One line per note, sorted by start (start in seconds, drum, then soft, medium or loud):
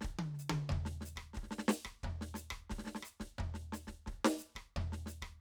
0.01 kick soft
0.01 snare soft
0.19 high tom medium
0.34 snare soft
0.39 hi-hat pedal medium
0.50 kick soft
0.50 high tom loud
0.69 kick soft
0.69 floor tom medium
0.85 snare soft
1.01 snare soft
1.05 hi-hat pedal medium
1.16 kick soft
1.16 cross-stick medium
1.34 kick soft
1.34 snare soft
1.43 snare soft
1.51 snare soft
1.59 snare soft
1.68 snare loud
1.68 hi-hat pedal medium
1.85 kick soft
1.85 cross-stick medium
2.03 kick soft
2.03 floor tom medium
2.21 snare soft
2.34 snare soft
2.34 hi-hat pedal medium
2.51 kick soft
2.51 cross-stick medium
2.70 kick soft
2.70 snare soft
2.79 snare soft
2.84 snare soft
2.87 snare soft
2.95 snare soft
3.03 cross-stick medium
3.03 hi-hat pedal medium
3.20 kick soft
3.20 snare soft
3.38 kick soft
3.38 floor tom medium
3.54 snare soft
3.73 snare soft
3.73 hi-hat pedal medium
3.87 kick soft
3.87 snare soft
4.06 kick soft
4.06 snare soft
4.25 snare loud
4.39 snare soft
4.39 hi-hat pedal medium
4.55 kick soft
4.55 cross-stick medium
4.76 kick soft
4.76 floor tom medium
4.92 snare soft
5.06 snare soft
5.06 hi-hat pedal medium
5.22 kick soft
5.22 cross-stick medium